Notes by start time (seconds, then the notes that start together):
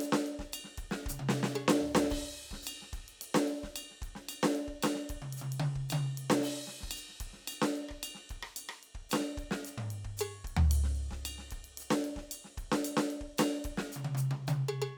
0.01 hi-hat pedal, ride
0.13 snare
0.27 ride
0.39 kick, snare
0.53 hi-hat pedal, ride bell
0.65 snare
0.78 kick, ride
0.92 snare
1.06 kick, hi-hat pedal
1.11 high tom
1.20 high tom
1.29 snare
1.43 snare
1.56 percussion
1.68 snare
1.81 floor tom
1.95 snare
2.04 snare
2.11 kick, cross-stick, crash
2.25 kick
2.51 kick, snare
2.63 hi-hat pedal
2.67 ride bell
2.82 snare
2.93 kick, snare, ride
2.98 kick, snare
3.01 snare
3.09 ride
3.22 hi-hat pedal, ride
3.35 snare
3.48 ride
3.64 kick, snare
3.69 kick
3.76 hi-hat pedal, ride bell
3.91 snare
4.02 kick, ride
4.09 kick
4.16 snare
4.29 hi-hat pedal, ride bell
4.43 snare
4.56 ride
4.68 kick
4.83 snare, hi-hat pedal, ride bell
4.95 snare
5.10 kick, ride
5.16 kick
5.22 high tom
5.33 ride
5.37 hi-hat pedal
5.42 high tom
5.53 ride
5.60 high tom
5.76 kick
5.90 hi-hat pedal, high tom, ride bell
6.18 ride
6.30 snare
6.40 snare, crash
6.44 hi-hat pedal
6.68 snare
6.81 kick, snare
6.91 snare, ride bell
6.97 hi-hat pedal
7.09 snare
7.21 kick, ride
7.27 kick
7.33 snare
7.39 snare
7.42 snare
7.48 hi-hat pedal, ride bell
7.62 snare
7.76 ride
7.89 kick, cross-stick
8.04 hi-hat pedal, ride bell
8.15 snare
8.30 kick, ride
8.38 kick
8.43 cross-stick
8.57 hi-hat pedal, ride bell
8.69 cross-stick
8.83 ride
8.95 kick
9.10 snare, hi-hat pedal, ride bell
9.20 snare
9.38 kick, ride
9.44 kick
9.51 snare
9.65 hi-hat pedal, ride
9.78 mid tom
9.91 ride
10.05 kick
10.18 hi-hat pedal, ride bell, percussion
10.45 kick, ride
10.51 kick
10.57 floor tom
10.72 hi-hat pedal, ride
10.84 snare
10.95 ride
11.11 kick, snare
11.26 hi-hat pedal, ride bell
11.39 snare
11.49 kick, cross-stick, ride
11.58 kick
11.65 snare, ride
11.70 snare
11.78 hi-hat pedal, ride
11.91 snare
12.05 ride
12.17 kick, snare
12.22 kick
12.32 hi-hat pedal, ride bell
12.45 snare
12.58 kick, ride
12.64 kick
12.72 snare
12.85 hi-hat pedal, ride bell
12.97 snare
13.11 ride
13.21 kick
13.38 snare, hi-hat pedal, ride bell
13.65 kick, ride
13.78 snare
13.93 hi-hat pedal
13.97 high tom
14.05 high tom
14.15 hi-hat pedal, high tom
14.31 high tom
14.48 hi-hat pedal, high tom
14.69 percussion
14.82 percussion